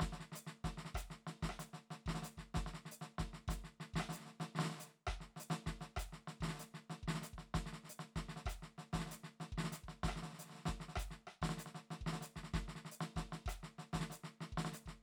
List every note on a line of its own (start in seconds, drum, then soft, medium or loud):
0.01 kick soft
0.01 snare medium
0.13 snare soft
0.20 snare soft
0.33 snare soft
0.33 hi-hat pedal medium
0.47 snare soft
0.65 kick soft
0.65 snare medium
0.78 snare soft
0.86 snare soft
0.95 kick soft
0.95 cross-stick medium
0.95 hi-hat pedal medium
1.11 snare soft
1.27 snare soft
1.43 kick soft
1.43 snare medium
1.50 kick soft
1.50 cross-stick medium
1.60 snare soft
1.60 hi-hat pedal medium
1.74 snare soft
1.91 snare soft
2.07 kick soft
2.07 snare medium
2.15 snare soft
2.23 snare soft
2.23 hi-hat pedal medium
2.38 kick soft
2.38 snare soft
2.55 kick soft
2.55 snare medium
2.67 snare soft
2.74 snare soft
2.86 snare soft
2.92 hi-hat pedal medium
3.02 snare soft
3.19 kick soft
3.19 snare medium
3.34 snare soft
3.49 kick soft
3.49 snare soft
3.49 hi-hat pedal medium
3.56 kick soft
3.65 snare soft
3.81 snare soft
3.94 kick soft
3.94 snare medium
4.01 cross-stick medium
4.10 snare soft
4.10 hi-hat pedal medium
4.15 snare soft
4.20 snare soft
4.26 snare soft
4.35 snare soft
4.41 snare medium
4.56 snare soft
4.60 snare medium
4.64 snare medium
4.67 snare soft
4.70 snare soft
4.73 snare soft
4.76 snare soft
4.78 snare soft
4.78 hi-hat pedal medium
4.82 snare soft
4.88 snare soft
5.08 kick soft
5.08 cross-stick medium
5.21 snare soft
5.37 snare soft
5.37 hi-hat pedal medium
5.51 snare medium
5.67 kick soft
5.67 snare medium
5.82 snare soft
5.97 kick soft
5.97 cross-stick medium
5.97 hi-hat pedal medium
6.13 snare soft
6.28 snare soft
6.41 kick soft
6.41 snare medium
6.49 snare medium
6.54 snare soft
6.59 snare soft
6.59 hi-hat pedal medium
6.75 snare soft
6.90 snare soft
7.04 kick soft
7.08 snare medium
7.15 snare medium
7.22 snare soft
7.22 hi-hat pedal medium
7.34 kick soft
7.39 snare soft
7.55 kick soft
7.55 snare medium
7.67 snare soft
7.73 snare soft
7.81 snare soft
7.84 snare soft
7.90 hi-hat pedal medium
8.00 snare soft
8.17 kick soft
8.17 snare medium
8.29 snare soft
8.37 snare soft
8.46 kick soft
8.46 cross-stick medium
8.46 hi-hat pedal medium
8.54 kick soft
8.63 snare soft
8.79 snare soft
8.94 kick soft
8.94 snare medium
9.00 snare medium
9.07 snare soft
9.10 snare soft
9.10 hi-hat pedal medium
9.24 snare soft
9.41 snare soft
9.53 kick soft
9.58 snare medium
9.64 snare medium
9.73 snare soft
9.73 hi-hat pedal medium
9.84 kick soft
9.89 snare soft
10.04 kick soft
10.04 snare medium
10.09 cross-stick medium
10.17 snare soft
10.23 snare soft
10.28 snare soft
10.34 snare soft
10.39 snare soft
10.39 hi-hat pedal medium
10.46 snare soft
10.50 snare soft
10.54 snare soft
10.59 snare soft
10.66 kick soft
10.66 snare medium
10.81 snare soft
10.89 snare soft
10.96 kick soft
10.96 cross-stick medium
10.96 hi-hat pedal medium
11.11 snare soft
11.28 cross-stick soft
11.42 kick soft
11.42 snare medium
11.50 snare medium
11.58 snare soft
11.58 hi-hat pedal medium
11.67 snare soft
11.75 snare soft
11.91 snare soft
12.02 kick soft
12.07 snare medium
12.13 snare medium
12.22 snare soft
12.22 hi-hat pedal medium
12.37 kick soft
12.37 snare soft
12.44 snare soft
12.54 kick soft
12.54 snare medium
12.69 snare soft
12.76 snare soft
12.86 snare soft
12.92 hi-hat pedal medium
13.01 snare medium
13.17 kick soft
13.17 snare medium
13.33 snare soft
13.47 kick soft
13.47 cross-stick medium
13.47 hi-hat pedal medium
13.64 snare soft
13.79 snare soft
13.94 kick soft
13.94 snare medium
14.01 snare medium
14.11 snare soft
14.11 hi-hat pedal medium
14.24 snare soft
14.41 snare soft
14.53 kick soft
14.58 snare medium
14.65 snare medium
14.73 snare soft
14.73 hi-hat pedal medium
14.87 kick soft
14.87 snare soft